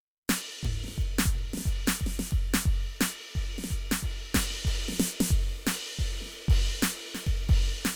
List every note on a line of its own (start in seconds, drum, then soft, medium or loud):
0.28 snare loud
0.28 hi-hat pedal medium
0.28 ride loud
0.52 ride medium
0.63 kick medium
0.63 floor tom loud
0.84 snare soft
0.88 snare soft
0.92 snare soft
0.97 kick medium
0.97 hi-hat pedal medium
0.97 ride medium
1.18 snare loud
1.18 ride medium
1.26 kick medium
1.26 ride medium
1.34 floor tom medium
1.53 snare medium
1.57 snare medium
1.60 snare soft
1.66 kick medium
1.66 hi-hat pedal medium
1.66 ride medium
1.87 snare loud
1.87 ride loud
2.00 kick medium
2.00 ride loud
2.06 snare medium
2.19 snare medium
2.31 kick medium
2.31 hi-hat pedal soft
2.31 ride loud
2.54 snare loud
2.54 ride loud
2.66 kick medium
2.66 ride medium
3.01 snare loud
3.01 hi-hat pedal medium
3.01 ride medium
3.23 ride medium
3.35 kick medium
3.35 ride medium
3.58 snare medium
3.64 snare medium
3.69 kick medium
3.69 hi-hat pedal soft
3.69 ride medium
3.91 snare loud
3.91 ride medium
4.03 kick medium
4.03 ride medium
4.34 kick medium
4.34 snare loud
4.34 hi-hat pedal medium
4.34 ride loud
4.50 snare soft
4.50 ride medium
4.65 kick medium
4.65 ride loud
4.88 snare medium
4.92 snare medium
5.00 snare loud
5.00 hi-hat pedal loud
5.20 snare loud
5.31 kick medium
5.31 crash medium
5.65 snare loud
5.65 hi-hat pedal medium
5.65 ride loud
5.88 ride medium
5.99 kick medium
5.99 ride medium
6.21 snare soft
6.25 snare soft
6.32 snare soft
6.32 hi-hat pedal soft
6.32 ride medium
6.48 kick loud
6.48 ride loud
6.82 snare loud
6.94 ride medium
7.15 snare medium
7.27 kick medium
7.27 ride loud
7.49 kick loud
7.49 ride loud
7.85 snare loud